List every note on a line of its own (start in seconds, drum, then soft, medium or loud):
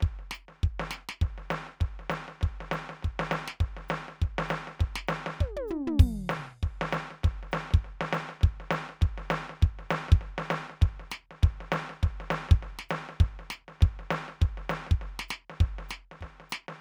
0.01 kick medium
0.01 snare soft
0.19 snare soft
0.32 snare loud
0.32 hi-hat pedal medium
0.49 snare soft
0.64 kick medium
0.64 snare soft
0.80 snare medium
0.91 snare loud
0.91 hi-hat pedal medium
1.09 snare loud
1.22 kick medium
1.22 snare soft
1.38 snare soft
1.51 snare loud
1.51 hi-hat pedal medium
1.67 snare soft
1.81 kick medium
1.81 snare soft
2.00 snare soft
2.10 snare loud
2.10 hi-hat pedal medium
2.29 snare soft
2.42 kick medium
2.42 snare soft
2.61 snare soft
2.72 snare loud
2.72 hi-hat pedal medium
2.90 snare medium
3.03 kick medium
3.03 snare soft
3.20 snare loud
3.31 snare loud
3.31 hi-hat pedal medium
3.48 snare loud
3.61 kick medium
3.61 snare soft
3.77 snare soft
3.89 snare loud
3.89 hi-hat pedal medium
3.94 kick soft
4.09 snare soft
4.22 kick medium
4.22 snare soft
4.39 snare loud
4.50 snare loud
4.50 hi-hat pedal medium
4.68 snare soft
4.80 kick medium
4.80 snare soft
4.96 snare loud
5.08 snare loud
5.08 hi-hat pedal medium
5.27 snare medium
5.41 kick medium
5.41 high tom medium
5.57 high tom loud
5.68 floor tom loud
5.68 hi-hat pedal medium
5.87 floor tom loud
6.00 kick loud
6.00 ride medium
6.20 kick soft
6.30 snare loud
6.30 hi-hat pedal medium
6.34 kick soft
6.63 kick medium
6.63 snare soft
6.82 snare loud
6.93 kick soft
6.93 snare loud
6.93 hi-hat pedal medium
7.11 snare soft
7.24 kick medium
7.24 snare soft
7.43 snare soft
7.52 snare loud
7.52 hi-hat pedal medium
7.71 kick loud
7.71 snare soft
7.85 snare soft
8.01 snare loud
8.12 kick soft
8.12 snare loud
8.12 hi-hat pedal medium
8.29 snare soft
8.42 kick loud
8.42 snare soft
8.61 snare soft
8.71 snare loud
8.71 hi-hat pedal medium
8.90 snare soft
9.02 kick loud
9.02 snare soft
9.18 snare soft
9.30 snare loud
9.30 hi-hat pedal medium
9.50 snare soft
9.62 kick loud
9.62 snare soft
9.79 snare soft
9.84 kick soft
9.91 snare loud
9.91 hi-hat pedal medium
10.06 kick soft
10.06 snare soft
10.12 kick loud
10.22 snare soft
10.39 snare medium
10.51 snare loud
10.51 hi-hat pedal medium
10.70 snare soft
10.82 kick loud
10.82 snare soft
11.00 kick soft
11.00 snare soft
11.11 snare loud
11.11 hi-hat pedal medium
11.31 snare soft
11.43 kick loud
11.43 snare soft
11.61 kick soft
11.61 snare soft
11.72 snare loud
11.72 hi-hat pedal medium
11.90 snare soft
12.03 kick medium
12.03 snare soft
12.21 kick soft
12.21 snare soft
12.31 snare loud
12.31 hi-hat pedal medium
12.49 kick loud
12.49 snare soft
12.63 snare soft
12.79 snare medium
12.89 snare loud
12.89 hi-hat pedal medium
13.09 snare soft
13.21 kick loud
13.21 snare soft
13.40 snare soft
13.51 snare loud
13.51 hi-hat pedal medium
13.69 snare soft
13.81 kick loud
13.81 snare soft
14.00 kick soft
14.00 snare soft
14.11 snare loud
14.11 hi-hat pedal medium
14.29 snare soft
14.42 kick loud
14.42 snare soft
14.58 snare soft
14.70 snare loud
14.70 hi-hat pedal medium
14.87 snare soft
14.92 kick loud
15.02 snare soft
15.20 snare loud
15.29 snare loud
15.29 hi-hat pedal medium
15.50 snare soft
15.61 kick loud
15.61 snare soft
15.79 snare soft
15.89 snare loud
15.89 hi-hat pedal medium
16.12 snare soft
16.21 kick soft
16.21 snare soft
16.40 snare soft
16.50 snare loud
16.50 hi-hat pedal medium
16.69 snare medium